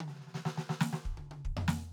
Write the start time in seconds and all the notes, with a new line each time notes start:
0.01 high tom
0.08 snare
0.14 snare
0.21 snare
0.28 snare
0.35 snare
0.46 snare
0.58 snare
0.70 snare
0.81 snare
0.93 snare
1.06 kick
1.18 closed hi-hat, high tom
1.32 high tom
1.45 kick
1.57 floor tom
1.69 snare